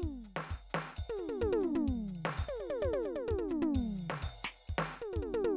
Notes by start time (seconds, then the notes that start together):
0.01 kick, ride bell
0.24 hi-hat pedal
0.37 snare
0.51 kick, ride bell
0.70 hi-hat pedal
0.75 snare
0.97 kick, ride
1.09 mid tom
1.17 hi-hat pedal, mid tom
1.29 mid tom
1.41 kick, mid tom
1.49 kick, mid tom
1.60 floor tom, hi-hat pedal
1.75 floor tom
1.88 kick, ride bell
1.95 kick
2.08 hi-hat pedal
2.15 ride
2.25 snare
2.38 kick, ride
2.48 kick, high tom
2.56 hi-hat pedal
2.60 high tom
2.70 high tom
2.82 kick, high tom
2.91 kick, high tom
3.02 hi-hat pedal, high tom
3.16 high tom
3.28 kick, mid tom
3.39 mid tom
3.49 floor tom, hi-hat pedal
3.62 floor tom
3.75 kick, ride bell
3.82 kick
3.85 kick
3.96 hi-hat pedal, ride
4.10 snare
4.23 kick, ride
4.30 kick
4.42 snare, hi-hat pedal
4.68 kick, ride bell
4.79 snare
4.88 hi-hat pedal, ride
5.02 mid tom
5.13 kick, mid tom
5.22 kick, mid tom
5.34 hi-hat pedal, mid tom
5.44 mid tom